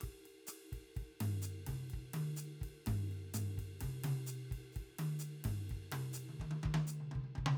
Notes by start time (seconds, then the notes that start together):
0.01 kick, cross-stick, ride
0.09 kick
0.26 ride
0.47 cross-stick, hi-hat pedal, ride
0.73 kick, ride
0.78 kick
0.95 kick, hi-hat pedal, ride
1.03 kick
1.21 floor tom, ride
1.42 hi-hat pedal
1.67 kick, mid tom, ride
1.74 kick
1.90 hi-hat pedal, ride
1.94 kick
1.99 kick
2.14 high tom, ride
2.37 hi-hat pedal, ride
2.62 kick, ride
2.67 kick
2.87 kick, floor tom, hi-hat pedal, ride
2.94 kick
3.12 ride
3.34 floor tom, hi-hat pedal, ride
3.58 kick, ride
3.63 kick
3.80 kick, hi-hat pedal, mid tom, ride
3.89 kick
4.04 mid tom, ride
4.27 hi-hat pedal, ride
4.52 kick, ride
4.57 kick
4.73 kick, hi-hat pedal, ride
4.82 kick
4.99 high tom, ride
5.20 hi-hat pedal, ride
5.45 kick, floor tom, ride
5.51 kick
5.70 kick, ride
5.77 kick
5.92 mid tom, ride
6.14 hi-hat pedal
6.18 ride
6.29 high tom
6.40 kick, high tom
6.45 kick
6.51 high tom
6.64 kick, high tom
6.75 high tom
6.88 hi-hat pedal
7.01 mid tom
7.12 kick, mid tom
7.21 kick, mid tom
7.36 kick, mid tom
7.47 mid tom